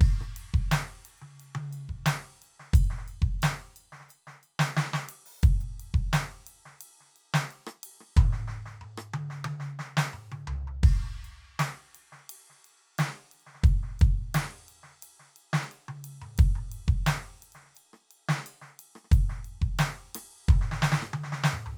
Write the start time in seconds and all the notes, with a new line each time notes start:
0.01 kick, crash
0.21 cross-stick
0.37 ride
0.54 kick
0.72 snare, ride
1.05 ride
1.17 hi-hat pedal
1.22 high tom
1.40 hi-hat pedal, ride
1.55 high tom
1.73 ride bell
1.89 kick
2.06 snare, ride
2.42 ride
2.60 snare
2.74 kick, ride bell
2.85 ride
2.90 snare
2.98 snare
3.08 ride bell
3.22 kick
3.42 snare, ride bell
3.76 ride bell
3.92 snare
4.00 snare
4.09 hi-hat pedal, ride bell
4.27 snare
4.43 ride bell
4.60 snare
4.67 hi-hat pedal
4.77 snare
4.94 snare
5.09 ride
5.26 open hi-hat
5.43 kick, hi-hat pedal, ride
5.61 closed hi-hat
5.80 ride
5.94 kick
6.13 snare, ride
6.47 ride
6.66 snare
6.79 hi-hat pedal, ride
7.01 snare
7.16 ride
7.34 snare
7.51 ride
7.67 cross-stick
7.84 ride
8.01 cross-stick
8.17 kick, mid tom
8.33 snare
8.48 snare
8.66 snare
8.81 mid tom
8.98 cross-stick
9.14 high tom
9.30 snare
9.45 high tom
9.60 snare
9.79 snare
9.97 snare
10.13 mid tom
10.32 high tom
10.48 floor tom
10.68 floor tom
10.84 kick, crash
11.04 floor tom
11.25 ride bell
11.60 snare, ride
11.95 ride
12.12 snare
12.30 ride
12.50 snare
12.56 snare
12.65 ride
12.99 snare, ride
13.32 ride
13.40 ride
13.47 snare
13.55 snare
13.62 kick, snare, ride
13.83 snare
13.89 snare
14.00 kick, ride
14.35 snare, ride
14.40 hi-hat pedal
14.69 ride
14.84 snare
15.02 hi-hat pedal, ride
15.20 snare
15.36 ride
15.53 snare
15.63 hi-hat pedal
15.72 ride
15.89 high tom
16.05 ride
16.22 mid tom
16.38 kick, ride
16.56 mid tom
16.72 ride
16.88 kick
17.07 snare, ride
17.17 snare
17.38 hi-hat pedal
17.43 ride
17.53 snare, ride
17.63 cross-stick, snare
17.75 hi-hat pedal, ride
17.93 cross-stick
18.11 ride
18.29 snare
18.46 ride bell
18.62 snare
18.80 ride
18.96 cross-stick
19.05 cross-stick
19.12 kick, ride
19.30 snare, hi-hat pedal
19.45 ride
19.62 kick
19.79 snare, ride
20.15 cross-stick, ride
20.49 kick, mid tom
20.62 snare
20.72 snare
20.82 snare
20.92 snare
21.03 cross-stick
21.14 high tom
21.24 snare
21.33 snare
21.44 snare
21.53 mid tom
21.66 floor tom